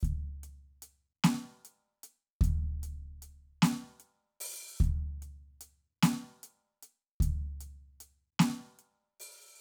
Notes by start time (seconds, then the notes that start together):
0.01 kick, hi-hat pedal
0.05 closed hi-hat
0.44 closed hi-hat
0.83 closed hi-hat
1.25 snare, closed hi-hat
1.66 closed hi-hat
2.04 closed hi-hat
2.42 kick, closed hi-hat
2.84 closed hi-hat
3.23 closed hi-hat
3.63 closed hi-hat, snare
4.00 closed hi-hat
4.41 open hi-hat
4.79 kick, hi-hat pedal
4.84 closed hi-hat
5.23 closed hi-hat
5.62 closed hi-hat
6.03 closed hi-hat, snare
6.44 closed hi-hat
6.83 closed hi-hat
7.21 kick, closed hi-hat
7.61 closed hi-hat
8.01 closed hi-hat
8.40 snare, closed hi-hat
8.79 closed hi-hat
9.21 open hi-hat